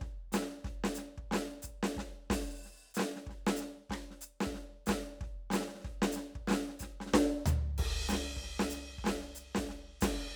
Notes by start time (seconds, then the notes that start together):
0.01 kick, snare
0.32 snare, hi-hat pedal
0.34 snare
0.41 snare
0.45 snare
0.50 snare
0.54 snare
0.57 snare
0.64 kick, snare
0.84 snare
0.94 snare, hi-hat pedal
1.17 kick
1.31 snare
1.33 snare
1.62 kick, hi-hat pedal
1.67 snare
1.83 snare
1.97 kick, snare
2.30 open hi-hat, kick, snare
2.65 snare
2.94 snare, hi-hat pedal
2.99 snare
3.16 snare
3.26 kick, snare
3.47 snare
3.56 hi-hat pedal
3.60 snare
3.90 kick, snare
3.94 cross-stick
4.10 snare
4.21 snare, hi-hat pedal
4.40 snare
4.46 kick
4.54 snare
4.86 kick, snare, hi-hat pedal
4.89 snare
5.21 kick, snare
5.50 snare, hi-hat pedal
5.53 snare
5.61 snare
5.68 snare
5.74 snare
5.79 snare
5.84 kick, snare
6.02 snare
6.12 hi-hat pedal
6.16 snare
6.35 kick
6.47 snare
6.51 snare
6.69 snare
6.79 kick, snare, hi-hat pedal
7.00 snare
7.06 snare
7.12 kick, snare
7.14 snare
7.46 floor tom, hi-hat pedal
7.78 kick, ride
8.08 snare, hi-hat pedal
8.12 snare
8.31 snare
8.36 kick
8.43 snare
8.59 snare
8.70 snare, hi-hat pedal
8.98 kick
9.04 snare
9.06 snare
9.21 snare
9.35 snare, hi-hat pedal
9.55 kick, snare
9.69 snare
10.01 kick, snare, hi-hat pedal, ride